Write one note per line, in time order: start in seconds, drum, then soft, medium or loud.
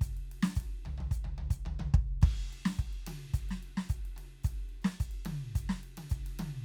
0.01 kick medium
0.01 hi-hat pedal medium
0.01 ride medium
0.17 ride soft
0.32 ride medium
0.43 snare loud
0.55 kick medium
0.55 hi-hat pedal medium
0.60 ride medium
0.85 floor tom medium
0.85 high tom medium
0.98 floor tom medium
0.98 high tom medium
1.11 kick medium
1.11 hi-hat pedal medium
1.24 floor tom medium
1.24 high tom medium
1.38 floor tom medium
1.38 high tom medium
1.50 kick medium
1.50 hi-hat pedal medium
1.65 floor tom medium
1.65 high tom medium
1.79 floor tom medium
1.79 high tom loud
1.94 kick loud
2.22 kick loud
2.22 ride medium
2.53 ride medium
2.65 snare medium
2.77 kick medium
2.77 hi-hat pedal soft
2.77 ride soft
2.93 ride soft
3.07 high tom loud
3.07 ride loud
3.34 kick medium
3.34 hi-hat pedal medium
3.34 ride medium
3.49 snare medium
3.49 ride soft
3.63 ride medium
3.77 snare medium
3.89 kick medium
3.89 hi-hat pedal medium
3.89 ride medium
4.05 ride soft
4.16 high tom soft
4.16 ride medium
4.44 kick medium
4.44 hi-hat pedal medium
4.44 ride medium
4.69 ride soft
4.82 snare loud
4.82 ride medium
5.00 kick medium
5.00 hi-hat pedal medium
5.11 ride medium
5.25 high tom loud
5.25 ride medium
5.55 kick medium
5.55 hi-hat pedal medium
5.55 ride medium
5.69 snare loud
5.83 ride medium
5.97 high tom medium
5.97 ride medium
6.10 kick medium
6.10 hi-hat pedal medium
6.26 ride medium
6.39 high tom loud
6.39 ride medium